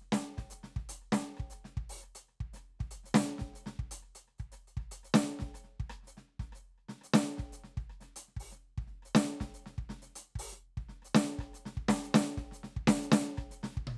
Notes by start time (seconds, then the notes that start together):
0.01 snare
0.12 snare
0.22 snare
0.26 cross-stick
0.38 kick, snare
0.50 snare, hi-hat pedal
0.63 snare
0.76 kick, snare
0.89 closed hi-hat
1.02 cross-stick
1.12 snare
1.20 cross-stick
1.26 cross-stick
1.37 kick, cross-stick
1.50 cross-stick, hi-hat pedal
1.65 snare
1.77 kick, cross-stick
1.90 open hi-hat
2.01 cross-stick, hi-hat pedal
2.15 closed hi-hat
2.29 cross-stick
2.41 kick
2.53 cross-stick, snare, closed hi-hat, hi-hat pedal, crash
2.80 kick, snare
2.91 closed hi-hat
3.04 snare, hi-hat pedal
3.14 snare
3.20 snare
3.28 snare
3.38 kick, snare
3.53 snare, hi-hat pedal
3.66 snare
3.78 kick, snare
3.91 closed hi-hat
4.03 cross-stick
4.15 closed hi-hat
4.28 cross-stick
4.39 open hi-hat, kick
4.52 cross-stick, closed hi-hat, hi-hat pedal
4.68 closed hi-hat
4.77 kick, cross-stick
4.92 closed hi-hat
5.03 cross-stick, hi-hat pedal
5.14 snare
5.29 snare
5.39 kick, snare
5.54 cross-stick, snare, hi-hat pedal
5.64 snare
5.80 kick, snare
5.90 cross-stick
6.02 snare
6.07 hi-hat pedal
6.17 snare
6.29 cross-stick
6.40 kick, snare
6.52 cross-stick, snare, hi-hat pedal
6.78 cross-stick
6.89 snare
7.01 cross-stick, snare, hi-hat pedal
7.14 snare
7.18 cross-stick
7.26 snare
7.38 kick, snare
7.51 snare, hi-hat pedal
7.64 snare
7.77 kick, snare
7.90 cross-stick
8.00 cross-stick, snare, hi-hat pedal
8.16 closed hi-hat
8.28 snare
8.37 open hi-hat, kick
8.52 snare, hi-hat pedal
8.57 closed hi-hat
8.78 kick, snare
8.87 snare
8.91 snare
9.02 cross-stick, hi-hat pedal
9.15 snare
9.21 cross-stick
9.28 snare
9.41 kick, snare
9.53 snare, hi-hat pedal
9.66 snare
9.78 kick, snare
9.89 snare
10.00 snare, hi-hat pedal
10.02 snare
10.16 closed hi-hat
10.36 open hi-hat, kick
10.52 snare, hi-hat pedal
10.56 closed hi-hat
10.77 kick, snare
11.02 cross-stick, snare, hi-hat pedal
11.15 snare
11.20 cross-stick
11.28 snare
11.39 kick, cross-stick
11.54 cross-stick, hi-hat pedal
11.66 snare
11.77 kick, snare
11.89 snare
12.02 cross-stick, hi-hat pedal
12.14 snare
12.21 snare
12.26 snare
12.37 kick, snare
12.51 snare, hi-hat pedal
12.63 snare
12.76 kick, cross-stick
12.88 snare
13.00 snare, hi-hat pedal
13.12 snare
13.17 cross-stick
13.26 snare
13.38 kick, cross-stick
13.50 snare, hi-hat pedal
13.63 snare
13.75 kick, cross-stick
13.87 high tom